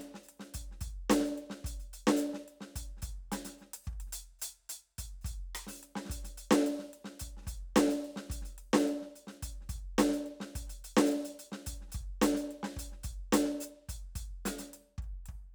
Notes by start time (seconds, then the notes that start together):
0.02 closed hi-hat
0.15 snare
0.24 hi-hat pedal
0.29 closed hi-hat
0.40 snare
0.54 closed hi-hat, kick
0.72 snare
0.80 closed hi-hat, kick, snare
0.88 kick
0.90 kick
1.10 closed hi-hat, snare
1.20 snare
1.25 open hi-hat
1.38 closed hi-hat
1.50 snare
1.65 closed hi-hat, kick
1.70 kick
1.80 closed hi-hat
1.94 closed hi-hat
2.08 snare
2.17 hi-hat pedal
2.22 closed hi-hat
2.34 snare
2.48 closed hi-hat
2.61 snare
2.76 closed hi-hat, kick
2.97 snare
3.01 closed hi-hat, kick, snare
3.11 kick
3.32 closed hi-hat, snare
3.45 closed hi-hat, snare
3.58 snare, hi-hat pedal
3.74 closed hi-hat
3.84 kick, hi-hat pedal
3.93 kick
4.01 closed hi-hat
4.07 snare
4.13 closed hi-hat
4.39 closed hi-hat, hi-hat pedal
4.70 closed hi-hat
4.99 closed hi-hat, kick
5.22 kick, hi-hat pedal
5.26 closed hi-hat
5.31 kick
5.34 kick
5.55 closed hi-hat, cross-stick
5.67 open hi-hat, snare
5.80 closed hi-hat, hi-hat pedal
5.96 snare
6.06 snare
6.10 closed hi-hat, kick
6.24 closed hi-hat, snare
6.38 closed hi-hat
6.51 snare
6.60 snare
6.67 closed hi-hat
6.79 snare
6.94 closed hi-hat
7.05 snare
7.12 snare
7.20 closed hi-hat, kick
7.37 snare
7.42 snare
7.45 closed hi-hat, kick, snare
7.76 closed hi-hat, snare
7.88 closed hi-hat, snare
8.05 closed hi-hat
8.17 snare
8.29 closed hi-hat, kick, snare
8.36 kick
8.42 closed hi-hat, snare
8.48 snare
8.58 closed hi-hat
8.74 snare
8.80 snare, hi-hat pedal
8.88 closed hi-hat
9.02 snare
9.16 closed hi-hat
9.28 snare
9.43 closed hi-hat, kick
9.61 snare
9.67 closed hi-hat, kick, snare
9.76 kick
9.78 kick
9.99 closed hi-hat, snare
10.09 snare
10.14 closed hi-hat
10.27 closed hi-hat
10.41 snare
10.54 closed hi-hat, kick, snare
10.68 closed hi-hat, snare
10.73 snare
10.85 closed hi-hat
10.97 snare
11.06 snare, hi-hat pedal
11.12 closed hi-hat
11.25 closed hi-hat, snare
11.40 closed hi-hat
11.52 snare
11.67 closed hi-hat, kick
11.73 kick
11.82 snare
11.89 closed hi-hat, snare
11.95 kick
12.01 kick
12.03 kick
12.22 closed hi-hat, snare
12.34 closed hi-hat, snare
12.51 closed hi-hat
12.64 snare
12.77 closed hi-hat, kick
12.93 snare
13.04 closed hi-hat, kick
13.13 kick
13.33 closed hi-hat, snare
13.45 snare
13.61 open hi-hat, hi-hat pedal
13.89 closed hi-hat, kick
14.16 closed hi-hat, kick
14.22 kick
14.24 kick
14.46 closed hi-hat, snare
14.59 closed hi-hat, snare
14.74 closed hi-hat
14.98 kick
15.03 kick, closed hi-hat
15.26 kick, closed hi-hat